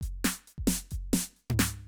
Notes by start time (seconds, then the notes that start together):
0.01 kick, closed hi-hat
0.24 closed hi-hat, snare
0.47 closed hi-hat
0.58 kick
0.67 closed hi-hat, snare
0.91 closed hi-hat, kick
1.13 closed hi-hat, snare
1.33 snare, closed hi-hat
1.50 floor tom
1.59 snare
1.74 snare